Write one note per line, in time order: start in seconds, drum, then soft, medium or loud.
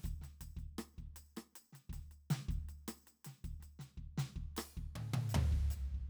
0.00 kick soft
0.00 snare soft
0.00 percussion soft
0.06 percussion soft
0.22 snare soft
0.22 percussion soft
0.41 kick soft
0.41 percussion medium
0.57 kick soft
0.57 percussion soft
0.79 cross-stick medium
0.79 percussion medium
0.98 kick soft
0.98 percussion soft
1.16 percussion medium
1.37 cross-stick medium
1.37 percussion soft
1.56 percussion medium
1.73 snare soft
1.73 percussion soft
1.90 kick soft
1.90 snare soft
1.90 percussion soft
2.11 percussion soft
2.30 snare medium
2.30 percussion medium
2.49 kick soft
2.49 percussion soft
2.69 percussion soft
2.88 cross-stick medium
2.88 percussion medium
3.07 percussion soft
3.25 snare soft
3.25 percussion medium
3.44 kick soft
3.44 percussion soft
3.60 snare soft
3.60 percussion soft
3.79 snare soft
3.79 percussion soft
3.98 kick soft
4.18 snare medium
4.18 percussion medium
4.36 kick soft
4.57 cross-stick medium
4.57 percussion medium
4.77 kick soft
4.96 high tom medium
5.14 high tom loud
5.30 percussion medium
5.35 floor tom loud
5.52 kick soft
5.71 percussion medium
5.95 kick soft